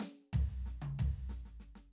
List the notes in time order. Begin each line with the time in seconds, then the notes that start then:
0.06 snare
0.26 snare
0.39 floor tom
0.54 snare
0.71 snare
0.87 high tom
1.05 floor tom
1.35 snare
1.51 snare
1.66 snare
1.81 snare